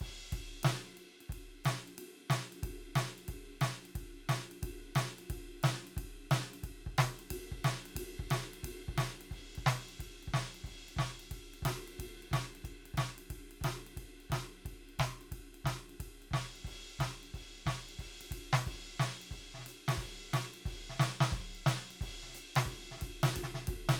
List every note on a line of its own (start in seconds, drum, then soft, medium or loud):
0.00 kick medium
0.00 ride medium
0.32 kick medium
0.32 ride medium
0.63 snare loud
0.63 ride loud
0.97 ride medium
1.21 ride soft
1.29 kick medium
1.29 ride medium
1.64 snare loud
1.64 hi-hat pedal medium
1.64 ride medium
1.88 ride soft
1.98 ride medium
2.30 snare loud
2.30 hi-hat pedal medium
2.30 ride medium
2.52 ride medium
2.63 kick medium
2.63 ride medium
2.95 snare loud
2.95 hi-hat pedal medium
2.95 ride medium
3.18 ride soft
3.28 kick medium
3.28 ride medium
3.61 snare loud
3.61 hi-hat pedal medium
3.61 ride medium
3.85 ride soft
3.95 kick medium
3.95 ride medium
4.29 snare loud
4.29 hi-hat pedal medium
4.29 ride medium
4.51 ride medium
4.63 kick medium
4.63 ride medium
4.95 snare loud
4.95 hi-hat pedal medium
4.95 ride medium
5.18 ride medium
5.30 kick medium
5.30 ride medium
5.63 snare loud
5.63 hi-hat pedal medium
5.63 ride medium
5.87 ride medium
5.97 kick medium
5.97 ride medium
6.31 snare loud
6.31 hi-hat pedal medium
6.31 ride medium
6.54 ride medium
6.63 kick soft
6.63 hi-hat pedal soft
6.63 ride medium
6.86 kick medium
6.98 snare loud
6.98 ride medium
7.19 ride medium
7.30 kick soft
7.30 ride loud
7.52 kick soft
7.64 snare loud
7.64 ride medium
7.86 ride medium
7.95 kick soft
7.95 ride loud
8.19 kick medium
8.30 snare loud
8.30 ride loud
8.53 ride medium
8.63 kick soft
8.63 ride loud
8.88 kick medium
8.98 snare loud
8.98 ride loud
9.21 ride medium
9.31 kick soft
9.31 ride medium
9.55 kick soft
9.55 ride medium
9.66 snare loud
9.66 ride medium
9.89 ride soft
9.99 kick soft
9.99 ride medium
10.23 ride soft
10.28 kick soft
10.34 snare loud
10.34 ride medium
10.54 ride soft
10.64 kick soft
10.64 ride medium
10.88 ride soft
10.96 kick medium
10.96 snare loud
10.96 ride medium
11.20 ride medium
11.31 kick soft
11.31 ride medium
11.54 ride soft
11.62 kick soft
11.62 snare loud
11.62 ride loud
11.88 ride medium
11.99 kick soft
11.99 ride medium
12.22 ride soft
12.31 kick soft
12.31 snare loud
12.31 ride medium
12.55 ride soft
12.64 kick soft
12.64 ride bell medium
12.86 ride medium
12.94 kick soft
12.94 snare loud
12.94 ride bell medium
13.18 ride medium
13.30 kick soft
13.30 ride medium
13.51 ride medium
13.61 kick soft
13.61 snare loud
13.61 ride loud
13.87 ride medium
13.97 kick soft
13.97 ride medium
14.20 ride soft
14.30 kick soft
14.30 snare medium
14.30 ride medium
14.65 kick soft
14.65 ride medium
14.89 ride soft
14.99 kick soft
14.99 snare loud
14.99 ride medium
15.21 ride soft
15.32 kick soft
15.32 ride medium
15.54 ride soft
15.64 kick soft
15.64 snare loud
15.64 ride medium
15.89 ride soft
16.00 kick soft
16.00 ride medium
16.22 ride soft
16.31 kick soft
16.31 snare loud
16.31 ride medium
16.56 ride soft
16.64 kick soft
16.64 ride medium
16.90 ride soft
16.99 kick soft
16.99 snare loud
16.99 ride medium
17.23 ride soft
17.34 kick soft
17.34 ride medium
17.58 ride soft
17.66 kick soft
17.66 snare loud
17.66 ride medium
17.89 ride soft
17.99 kick soft
17.99 ride medium
18.21 ride medium
18.31 kick medium
18.31 ride medium
18.53 snare loud
18.66 kick medium
18.66 ride medium
19.00 snare loud
19.00 ride medium
19.22 ride medium
19.31 kick soft
19.31 ride medium
19.54 snare soft
19.59 snare soft
19.66 hi-hat pedal medium
19.66 ride medium
19.88 snare loud
19.88 ride medium
19.97 kick medium
19.97 ride medium
20.33 snare loud
20.33 hi-hat pedal medium
20.33 ride medium
20.54 ride medium
20.65 kick medium
20.65 ride medium
20.90 snare medium
20.96 snare soft
21.00 snare loud
21.00 hi-hat pedal loud
21.20 snare loud
21.32 kick medium
21.32 ride medium
21.55 ride soft
21.66 snare loud
21.66 hi-hat pedal loud
21.66 ride medium
21.91 ride medium
22.01 kick medium
22.01 ride medium
22.23 snare soft
22.28 snare soft
22.35 hi-hat pedal loud
22.35 ride medium
22.56 snare loud
22.56 ride loud
22.66 kick soft
22.66 ride medium
22.91 snare soft
22.97 snare soft
22.97 ride medium
23.02 kick medium
23.02 hi-hat pedal soft
23.23 snare loud
23.23 ride loud
23.36 kick soft
23.36 ride loud
23.43 snare medium
23.54 snare medium
23.59 snare soft
23.67 kick medium
23.67 hi-hat pedal medium
23.67 ride loud
23.89 snare loud
23.89 ride loud